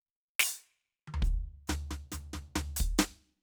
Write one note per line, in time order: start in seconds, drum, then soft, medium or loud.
0.39 open hi-hat loud
0.39 snare loud
1.07 high tom medium
1.14 floor tom medium
1.22 kick medium
1.22 hi-hat pedal soft
1.67 snare medium
1.67 floor tom medium
1.67 hi-hat pedal soft
1.90 snare soft
1.90 floor tom medium
2.12 snare soft
2.12 floor tom medium
2.12 hi-hat pedal medium
2.33 snare soft
2.33 floor tom medium
2.55 snare medium
2.55 floor tom medium
2.76 closed hi-hat medium
2.76 kick medium
2.98 snare loud
2.98 hi-hat pedal medium